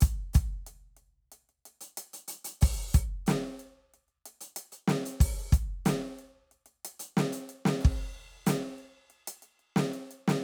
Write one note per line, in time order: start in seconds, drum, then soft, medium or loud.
0.01 closed hi-hat loud
0.01 kick loud
0.34 kick loud
0.34 closed hi-hat loud
0.34 hi-hat pedal loud
0.67 closed hi-hat medium
0.97 closed hi-hat soft
1.32 closed hi-hat medium
1.49 closed hi-hat soft
1.66 closed hi-hat medium
1.81 closed hi-hat medium
1.97 closed hi-hat loud
2.13 closed hi-hat loud
2.28 closed hi-hat loud
2.45 closed hi-hat loud
2.61 open hi-hat loud
2.61 kick loud
2.94 kick loud
2.94 hi-hat pedal loud
2.94 open hi-hat loud
3.27 closed hi-hat medium
3.27 snare loud
3.60 closed hi-hat medium
3.94 closed hi-hat soft
4.08 closed hi-hat soft
4.26 closed hi-hat medium
4.41 closed hi-hat loud
4.56 closed hi-hat loud
4.72 closed hi-hat medium
4.88 snare loud
5.06 closed hi-hat medium
5.21 kick loud
5.21 open hi-hat loud
5.52 kick loud
5.52 closed hi-hat medium
5.52 hi-hat pedal loud
5.86 closed hi-hat loud
5.86 snare loud
6.19 closed hi-hat soft
6.51 closed hi-hat soft
6.66 closed hi-hat soft
6.85 closed hi-hat loud
7.00 closed hi-hat loud
7.17 snare loud
7.33 closed hi-hat medium
7.49 closed hi-hat medium
7.65 snare loud
7.81 kick loud
7.81 crash medium
8.47 closed hi-hat loud
8.47 snare loud
8.78 closed hi-hat soft
9.10 closed hi-hat soft
9.28 closed hi-hat loud
9.42 closed hi-hat medium
9.59 closed hi-hat soft
9.76 snare loud
9.94 closed hi-hat medium
10.11 closed hi-hat medium
10.28 snare loud